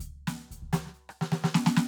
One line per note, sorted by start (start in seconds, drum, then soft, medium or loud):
0.05 closed hi-hat medium
0.05 kick medium
0.28 closed hi-hat medium
0.28 snare medium
0.51 closed hi-hat soft
0.51 kick soft
0.63 kick soft
0.73 open hi-hat medium
0.73 snare loud
0.86 snare soft
0.94 hi-hat pedal soft
1.10 cross-stick medium
1.22 snare loud
1.32 snare loud
1.44 snare loud
1.55 snare loud
1.67 snare loud
1.77 snare loud